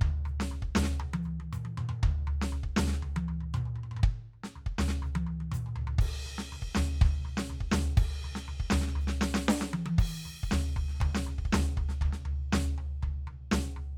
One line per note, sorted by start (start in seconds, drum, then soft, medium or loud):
0.01 kick medium
0.01 floor tom loud
0.25 floor tom medium
0.25 hi-hat pedal soft
0.40 snare medium
0.51 floor tom medium
0.62 kick medium
0.75 snare loud
0.75 floor tom loud
0.83 snare medium
0.91 snare soft
1.00 floor tom medium
1.13 high tom loud
1.23 floor tom medium
1.23 hi-hat pedal soft
1.40 high tom medium
1.53 hi-hat pedal soft
1.53 mid tom loud
1.65 high tom medium
1.77 mid tom loud
1.89 mid tom loud
2.03 kick loud
2.03 floor tom loud
2.27 floor tom medium
2.42 snare medium
2.52 floor tom medium
2.63 kick medium
2.76 snare loud
2.76 floor tom loud
2.87 snare medium
2.92 snare medium
3.02 floor tom medium
3.16 high tom loud
3.28 floor tom medium
3.41 mid tom soft
3.53 hi-hat pedal soft
3.53 mid tom loud
3.65 mid tom medium
3.76 mid tom medium
3.83 mid tom medium
3.91 mid tom medium
3.97 mid tom medium
4.03 kick loud
4.33 floor tom soft
4.44 snare medium
4.56 floor tom medium
4.66 kick medium
4.78 snare loud
4.78 floor tom loud
4.88 snare medium
5.02 floor tom medium
5.02 hi-hat pedal soft
5.15 high tom loud
5.27 floor tom medium
5.40 high tom medium
5.52 hi-hat pedal medium
5.52 mid tom loud
5.66 mid tom medium
5.76 floor tom loud
5.87 floor tom medium
5.98 kick loud
5.98 ride loud
6.26 floor tom soft
6.38 snare medium
6.52 floor tom medium
6.62 kick medium
6.75 snare loud
6.75 floor tom loud
7.01 kick loud
7.01 snare soft
7.01 floor tom loud
7.25 floor tom medium
7.37 snare loud
7.49 floor tom medium
7.60 kick medium
7.72 snare loud
7.72 floor tom loud
7.97 kick loud
7.97 ride loud
8.24 floor tom medium
8.35 snare medium
8.48 floor tom medium
8.60 kick medium
8.70 snare loud
8.70 floor tom loud
8.81 snare medium
8.86 snare soft
8.95 floor tom medium
9.01 hi-hat pedal soft
9.07 snare medium
9.21 snare loud
9.34 snare loud
9.48 snare loud
9.61 snare medium
9.73 high tom loud
9.86 high tom loud
9.98 kick loud
9.98 crash medium
10.25 floor tom medium
10.43 kick medium
10.51 snare loud
10.51 floor tom loud
10.76 kick medium
10.76 floor tom medium
10.88 snare soft
10.94 snare soft
10.99 kick medium
10.99 snare soft
10.99 floor tom loud
11.15 snare loud
11.27 floor tom medium
11.38 kick medium
11.45 kick medium
11.53 snare loud
11.53 floor tom loud
11.77 kick medium
11.77 floor tom medium
11.89 snare soft
12.01 kick medium
12.01 floor tom loud
12.12 snare soft
12.25 floor tom medium
12.53 snare loud
12.53 floor tom loud
12.78 floor tom soft
13.03 kick medium
13.03 floor tom medium
13.27 floor tom medium
13.51 snare loud
13.51 floor tom loud
13.76 floor tom medium